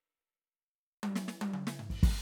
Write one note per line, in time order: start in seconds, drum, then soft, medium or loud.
1.03 high tom loud
1.16 snare medium
1.28 snare medium
1.41 high tom loud
1.54 mid tom medium
1.67 snare medium
1.79 floor tom medium
1.90 kick soft
1.90 crash medium
2.03 kick loud
2.03 crash medium